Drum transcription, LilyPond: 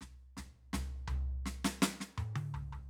\new DrumStaff \drummode { \time 4/4 \tempo 4 = 83 <sn tomfh>8 <sn tomfh>8 <sn tomfh>8 tomfh8 sn16 sn16 sn16 sn16 toml16 <tommh hho>16 tomfh16 tomfh16 | }